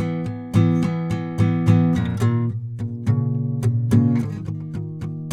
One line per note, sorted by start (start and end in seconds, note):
0.00 0.26 E3
0.00 0.57 B3
0.00 0.58 E4
0.28 0.39 E3
0.57 0.84 E3
0.57 0.85 B3
0.57 0.86 E4
0.84 1.12 E3
0.84 1.10 B3
0.84 1.42 E4
1.13 1.41 E3
1.13 1.41 B3
1.41 1.69 E3
1.41 1.70 B3
1.41 1.70 E4
1.69 1.96 E3
1.69 2.00 B3
1.69 2.04 E4
1.97 2.19 F2
1.97 2.19 A#2
2.23 2.52 A#2
2.52 2.80 A#2
2.80 3.08 A#2
2.80 2.99 C#3
3.08 3.64 A#2
3.08 3.65 C#3
3.65 3.92 A#2
3.65 3.91 C#3
3.93 4.28 A#2
3.93 4.32 C#3
3.93 4.03 G#3
4.25 4.32 G#3
4.32 4.48 D#3
4.32 4.46 G#3
4.48 4.77 D#3
4.77 5.03 D#3
5.04 5.33 D#3
5.04 5.32 A#3